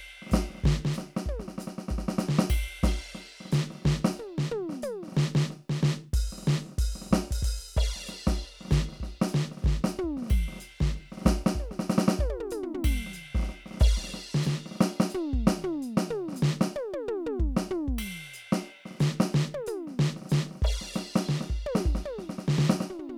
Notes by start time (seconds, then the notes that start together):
0.23 snare
0.27 snare
0.30 kick, snare, hi-hat pedal
0.33 snare
0.51 snare
0.55 snare
0.59 snare
0.64 kick, snare
0.85 snare
0.94 hi-hat pedal
0.99 snare
1.17 snare
1.26 kick, high tom
1.40 snare
1.49 snare
1.58 snare, hi-hat pedal
1.68 snare
1.79 snare
1.89 kick, snare
1.99 snare
2.19 snare, hi-hat pedal
2.29 snare
2.39 snare
2.50 kick, ride
2.84 kick, snare, hi-hat pedal, crash
3.15 snare
3.41 snare
3.46 snare
3.50 snare, hi-hat pedal
3.53 snare
3.71 snare
3.76 snare
3.79 snare
3.83 kick, snare
3.86 snare
4.05 snare
4.12 hi-hat pedal
4.19 mid tom
4.39 snare
4.51 mid tom
4.70 snare
4.73 snare
4.83 hi-hat pedal, high tom
5.03 snare
5.08 snare
5.13 snare
5.17 snare
5.35 snare
5.51 snare
5.70 snare
5.83 snare
6.14 open hi-hat, kick
6.33 snare
6.39 snare
6.43 snare
6.48 snare
6.63 snare
6.67 snare
6.70 snare
6.72 snare
6.79 open hi-hat, kick
6.96 snare
7.02 snare
7.07 snare
7.12 kick, snare
7.31 kick, open hi-hat
7.43 open hi-hat, kick
7.77 kick, crash
7.97 snare
8.02 snare
8.06 snare, hi-hat pedal
8.09 snare
8.27 kick, snare
8.61 snare
8.66 snare
8.69 snare
8.72 kick, snare, hi-hat pedal
8.89 snare
8.93 snare
8.96 snare
9.01 kick, snare
9.22 snare
9.29 hi-hat pedal
9.35 snare
9.52 snare
9.58 snare
9.63 kick, snare
9.67 snare
9.85 snare, hi-hat pedal
9.99 floor tom
10.04 kick
10.17 snare
10.23 snare
10.27 snare, ride
10.31 kick, snare
10.49 snare
10.53 snare
10.57 snare, hi-hat pedal, crash
10.81 kick, snare
10.96 snare
11.12 snare
11.18 snare
11.22 kick, snare
11.26 snare, hi-hat pedal
11.47 kick, snare
11.56 kick
11.60 high tom
11.72 snare
11.80 snare
11.90 snare, hi-hat pedal
11.99 snare
12.08 snare
12.19 kick, high tom
12.30 high tom
12.40 mid tom
12.51 hi-hat pedal, mid tom
12.63 floor tom
12.74 floor tom
12.85 kick, ride
13.07 snare
13.14 hi-hat pedal
13.35 kick, snare
13.40 snare
13.43 snare
13.49 snare
13.66 snare
13.72 snare
13.75 snare
13.78 kick, snare, hi-hat pedal, crash
13.98 snare
14.05 snare
14.09 snare
14.14 snare
14.35 snare
14.44 snare, hi-hat pedal
14.66 snare
14.72 snare
14.76 snare
14.81 snare
15.01 snare
15.10 hi-hat pedal
15.15 floor tom
15.34 kick
15.48 snare
15.64 floor tom
15.83 hi-hat pedal
15.98 snare
16.10 mid tom
16.29 snare
16.33 snare
16.36 snare, hi-hat pedal
16.43 snare
16.62 snare
16.76 high tom
16.94 high tom
17.08 mid tom
17.26 mid tom
17.40 kick
17.57 snare
17.71 floor tom
17.88 kick
17.99 ride
18.34 hi-hat pedal
18.53 snare
18.72 snare
18.86 snare
18.91 snare
18.95 snare
19.00 snare, hi-hat pedal
19.21 snare
19.35 snare
19.54 high tom
19.67 hi-hat pedal, mid tom
19.88 snare
19.91 snare
20.00 snare
20.17 snare
20.22 snare
20.26 snare, hi-hat pedal
20.32 snare
20.47 snare
20.51 snare
20.56 snare
20.60 kick, snare
20.64 crash
20.82 snare
20.94 snare, hi-hat pedal
21.16 snare
21.29 snare
21.41 snare
21.50 kick
21.66 high tom
21.76 snare
21.86 kick
21.96 snare
22.06 high tom
22.19 snare
22.30 snare
22.39 snare
22.49 snare
22.59 snare
22.70 snare
22.81 snare
22.90 floor tom
22.99 floor tom
23.09 floor tom